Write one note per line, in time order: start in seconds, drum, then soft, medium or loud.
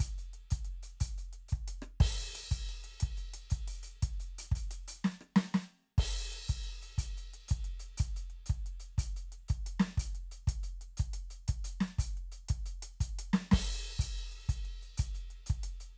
0.01 closed hi-hat loud
0.01 kick medium
0.19 open hi-hat medium
0.34 closed hi-hat medium
0.52 closed hi-hat loud
0.52 kick medium
0.66 closed hi-hat medium
0.84 open hi-hat medium
1.01 open hi-hat loud
1.01 kick medium
1.19 open hi-hat medium
1.34 closed hi-hat medium
1.50 open hi-hat medium
1.50 kick medium
1.69 closed hi-hat loud
1.83 cross-stick medium
2.01 kick loud
2.01 crash loud
2.36 open hi-hat loud
2.52 open hi-hat loud
2.52 kick medium
2.70 open hi-hat medium
2.85 closed hi-hat medium
3.01 kick medium
3.01 closed hi-hat loud
3.18 closed hi-hat medium
3.35 closed hi-hat loud
3.51 closed hi-hat loud
3.51 kick medium
3.69 open hi-hat loud
3.84 open hi-hat medium
4.04 kick medium
4.04 closed hi-hat loud
4.21 open hi-hat medium
4.39 closed hi-hat loud
4.53 open hi-hat loud
4.53 kick medium
4.58 kick soft
4.72 open hi-hat loud
4.89 open hi-hat loud
5.05 snare loud
5.22 cross-stick medium
5.37 snare loud
5.55 snare loud
5.99 kick medium
5.99 crash loud
6.33 closed hi-hat medium
6.50 closed hi-hat medium
6.50 kick medium
6.65 closed hi-hat medium
6.83 closed hi-hat medium
6.99 closed hi-hat loud
6.99 kick medium
7.18 closed hi-hat medium
7.35 closed hi-hat medium
7.49 closed hi-hat loud
7.49 kick medium
7.65 closed hi-hat medium
7.81 closed hi-hat medium
7.99 closed hi-hat loud
7.99 kick medium
8.17 closed hi-hat medium
8.31 closed hi-hat soft
8.47 closed hi-hat medium
8.47 kick medium
8.67 closed hi-hat medium
8.81 closed hi-hat medium
8.99 closed hi-hat loud
8.99 kick medium
9.17 closed hi-hat medium
9.33 closed hi-hat medium
9.49 closed hi-hat medium
9.49 kick medium
9.67 closed hi-hat loud
9.81 snare loud
9.98 closed hi-hat loud
9.98 kick medium
10.16 closed hi-hat medium
10.32 closed hi-hat medium
10.48 kick medium
10.48 closed hi-hat loud
10.64 closed hi-hat medium
10.82 closed hi-hat medium
10.98 closed hi-hat loud
10.98 kick medium
11.14 closed hi-hat loud
11.31 closed hi-hat medium
11.49 kick medium
11.49 closed hi-hat loud
11.65 closed hi-hat loud
11.82 snare loud
12.00 open hi-hat loud
12.00 kick medium
12.18 closed hi-hat soft
12.33 closed hi-hat medium
12.50 kick medium
12.50 closed hi-hat loud
12.67 closed hi-hat medium
12.83 closed hi-hat loud
13.01 closed hi-hat loud
13.01 kick medium
13.20 closed hi-hat loud
13.34 snare loud
13.53 kick medium
13.53 snare loud
13.53 crash loud
14.00 closed hi-hat loud
14.00 kick medium
14.05 kick soft
14.19 closed hi-hat medium
14.32 closed hi-hat medium
14.50 closed hi-hat medium
14.50 kick medium
14.66 closed hi-hat soft
14.83 closed hi-hat soft
14.99 closed hi-hat loud
14.99 kick medium
15.16 closed hi-hat medium
15.31 closed hi-hat medium
15.47 closed hi-hat loud
15.47 kick medium
15.64 closed hi-hat loud
15.81 closed hi-hat medium